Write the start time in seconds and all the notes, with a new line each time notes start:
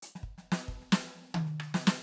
0.02 closed hi-hat
0.15 snare
0.23 kick
0.38 snare
0.52 snare
0.68 kick
0.81 snare
0.92 snare
1.18 snare
1.34 high tom
1.46 snare
1.60 cross-stick
1.74 snare
1.87 snare